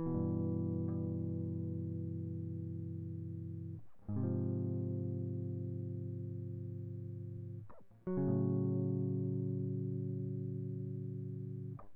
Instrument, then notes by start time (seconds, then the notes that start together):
electric guitar
0.00 E3
0.08 B2
0.16 G2
4.10 G#2
4.18 C3
4.24 F3
8.08 F#3
8.18 C#3
8.29 A2